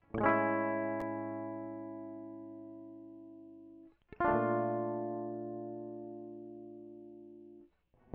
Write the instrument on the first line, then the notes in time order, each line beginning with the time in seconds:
electric guitar
0.16 A2
0.22 G#3 C#4
0.26 E4
4.21 F4
4.25 A3 D4
4.36 A#2